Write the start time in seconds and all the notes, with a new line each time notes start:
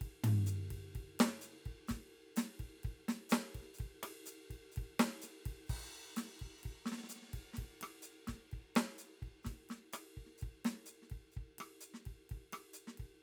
0.01 kick, ride
0.07 kick
0.24 floor tom, ride
0.46 hi-hat pedal
0.70 kick, ride
0.76 kick
0.95 kick, ride
1.01 kick
1.19 snare, ride
1.26 snare
1.41 hi-hat pedal
1.46 snare
1.51 snare
1.66 kick, ride
1.71 kick
1.88 kick, snare, hi-hat pedal, ride
1.96 kick
2.36 snare, hi-hat pedal, ride
2.59 kick, ride
2.65 kick
2.76 snare
2.83 kick, ride
2.91 kick
3.08 snare, ride
3.29 snare, hi-hat pedal, ride
3.55 kick, ride
3.60 kick, snare
3.74 hi-hat pedal
3.79 kick, ride
3.86 kick
4.03 cross-stick, ride
4.26 hi-hat pedal, ride
4.50 kick, ride
4.55 kick
4.72 hi-hat pedal
4.76 kick, ride
4.83 kick
4.99 snare, ride
5.08 snare
5.22 snare, hi-hat pedal, ride
5.46 kick, ride
5.51 kick
5.66 kick, hi-hat pedal, crash
6.16 snare, hi-hat pedal, ride
6.39 kick, ride
6.44 kick, snare
6.58 hi-hat pedal
6.63 kick, ride
6.71 kick
6.86 snare, ride
6.92 snare
6.97 snare
7.03 snare
7.09 snare, hi-hat pedal, ride
7.16 snare
7.22 snare
7.28 snare
7.33 kick, ride
7.39 kick
7.53 snare, ride
7.58 kick
7.64 kick
7.81 cross-stick, ride
8.02 hi-hat pedal, ride
8.27 kick, snare, ride
8.34 kick
8.52 kick, ride
8.58 kick
8.75 snare, ride
8.88 snare
8.98 hi-hat pedal
9.03 snare
9.08 snare
9.22 kick, ride
9.27 kick
9.43 kick, snare, hi-hat pedal, ride
9.52 kick
9.69 snare, ride
9.93 cross-stick, hi-hat pedal, ride
10.17 kick
10.26 snare
10.38 hi-hat pedal, ride
10.42 kick
10.48 kick
10.65 snare, ride
10.86 hi-hat pedal, ride
11.02 snare
11.10 kick, ride
11.17 kick
11.32 hi-hat pedal, ride
11.37 kick
11.42 kick
11.58 cross-stick, ride
11.81 hi-hat pedal
11.94 snare
12.05 kick, ride
12.12 kick
12.29 kick, ride
12.37 kick
12.53 cross-stick, ride
12.73 hi-hat pedal
12.87 snare
12.97 kick, ride
13.04 kick